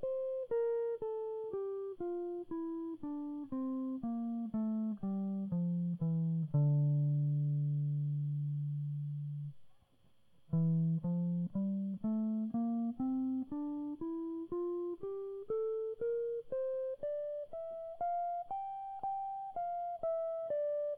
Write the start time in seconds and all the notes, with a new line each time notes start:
0.04 C5
0.52 A#4
1.03 A4
1.54 G4
2.01 F4
2.52 E4
3.04 D4
3.53 C4
4.04 A#3
4.55 A3
5.04 G3
5.53 F3
6.03 E3
6.56 D3
10.54 E3
11.06 F3
11.57 G3
12.05 A3
12.55 A#3
13.01 C4
13.53 D4
14.02 E4
14.53 F4
15.04 G4
15.51 A4
16.02 A#4
16.53 C5
17.04 D5
17.54 E5
18.01 F5
18.51 G5
19.04 G5
19.57 F5
20.04 E5
20.51 D5